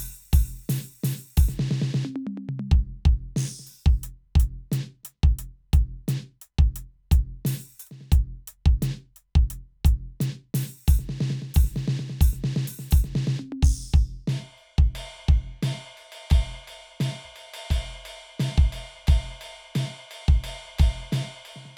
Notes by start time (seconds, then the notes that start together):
0.01 open hi-hat
0.35 open hi-hat, kick
0.71 open hi-hat, snare
1.05 open hi-hat, snare
1.38 open hi-hat, kick
1.50 snare, hi-hat pedal
1.61 snare
1.72 snare
1.77 hi-hat pedal
1.83 snare
1.96 snare, hi-hat pedal
2.06 high tom
2.17 high tom
2.28 mid tom
2.39 high tom
2.50 floor tom
2.61 mid tom
2.73 kick
3.07 kick
3.38 snare, crash
3.61 snare
3.68 open hi-hat
3.87 kick
4.05 closed hi-hat
4.37 kick
4.41 closed hi-hat
4.73 closed hi-hat, snare
5.05 snare, closed hi-hat
5.25 kick
5.40 closed hi-hat
5.75 closed hi-hat, kick
6.10 closed hi-hat, snare
6.43 closed hi-hat
6.60 kick
6.77 closed hi-hat
7.13 closed hi-hat, kick
7.47 open hi-hat, snare
7.81 hi-hat pedal, open hi-hat
7.88 closed hi-hat
7.93 snare
8.02 snare
8.13 closed hi-hat, kick
8.49 closed hi-hat
8.67 kick
8.84 closed hi-hat, snare
8.99 hi-hat pedal
9.18 closed hi-hat
9.37 kick
9.52 closed hi-hat
9.86 closed hi-hat, kick
10.22 closed hi-hat, snare
10.56 open hi-hat, snare
10.89 open hi-hat, kick
11.01 snare
11.22 snare
11.32 snare
11.43 snare
11.56 open hi-hat, kick
11.66 snare
11.77 snare
11.89 snare
12.01 snare
12.11 snare
12.22 open hi-hat, kick
12.35 snare
12.45 snare
12.58 snare
12.69 open hi-hat
12.81 snare
12.92 open hi-hat, kick
13.06 snare
13.17 snare
13.29 snare, hi-hat pedal
13.41 high tom
13.54 high tom
13.64 kick, crash
13.95 kick
14.29 snare, ride
14.59 ride
14.80 kick
14.97 ride bell
15.30 kick
15.64 snare, ride
15.99 ride
16.13 ride
16.32 kick, ride
16.69 ride
17.02 snare, ride
17.26 kick
17.37 ride
17.55 ride
17.72 kick, ride
18.07 ride
18.41 snare, ride
18.59 kick
18.74 ride
19.09 kick, ride
19.42 ride
19.77 snare, ride
20.12 ride
20.30 kick
20.45 ride
20.80 kick, ride
21.14 snare, ride
21.47 ride
21.54 snare, ride
21.67 snare